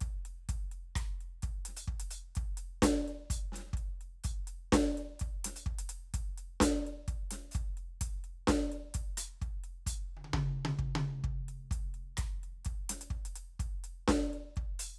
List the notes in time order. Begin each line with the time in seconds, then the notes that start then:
0.01 kick, closed hi-hat
0.25 closed hi-hat
0.49 kick, closed hi-hat
0.72 closed hi-hat
0.96 kick, cross-stick, closed hi-hat
1.21 closed hi-hat
1.43 kick, closed hi-hat
1.65 snare, closed hi-hat
1.77 closed hi-hat
1.88 kick
2.00 closed hi-hat
2.11 closed hi-hat
2.36 kick, closed hi-hat
2.57 closed hi-hat
2.82 closed hi-hat, kick, snare
3.08 closed hi-hat
3.30 closed hi-hat, kick
3.52 snare
3.56 snare, closed hi-hat
3.59 snare
3.67 snare
3.70 kick, snare
3.77 closed hi-hat
4.01 closed hi-hat
4.24 closed hi-hat, kick
4.47 closed hi-hat
4.73 kick, snare, closed hi-hat
4.98 closed hi-hat
5.20 kick, closed hi-hat
5.45 snare, closed hi-hat
5.56 closed hi-hat
5.66 kick
5.79 closed hi-hat
5.89 closed hi-hat
6.14 kick, closed hi-hat
6.38 closed hi-hat
6.61 closed hi-hat, kick, snare
6.87 closed hi-hat
7.08 kick, closed hi-hat
7.31 snare, open hi-hat
7.52 kick, snare, hi-hat pedal
7.56 closed hi-hat
7.77 closed hi-hat
8.01 kick, closed hi-hat
8.24 closed hi-hat
8.48 kick, snare, closed hi-hat
8.72 closed hi-hat
8.94 kick, closed hi-hat
9.18 closed hi-hat, cross-stick
9.42 kick, closed hi-hat
9.64 closed hi-hat
9.87 closed hi-hat, kick
10.17 high tom
10.25 high tom
10.34 kick, high tom
10.65 high tom
10.79 kick
10.96 high tom
11.24 kick
11.49 closed hi-hat
11.71 kick, closed hi-hat
11.94 closed hi-hat
12.17 kick, cross-stick, closed hi-hat
12.44 closed hi-hat
12.65 kick, closed hi-hat
12.90 snare, closed hi-hat
13.01 closed hi-hat
13.11 kick
13.25 closed hi-hat
13.36 closed hi-hat
13.60 kick, closed hi-hat
13.84 closed hi-hat
14.08 kick, snare, closed hi-hat
14.33 closed hi-hat
14.56 kick, closed hi-hat
14.79 open hi-hat